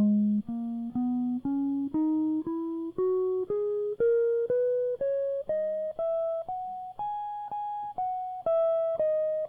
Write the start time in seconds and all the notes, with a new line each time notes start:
0.00 G#3
0.48 A#3
0.96 B3
1.46 C#4
1.95 D#4
2.48 E4
2.99 F#4
3.51 G#4
4.01 A#4
4.51 B4
5.02 C#5
5.50 D#5
6.00 E5
6.49 F#5
7.00 G#5
7.52 G#5
7.99 F#5
8.47 E5
9.00 D#5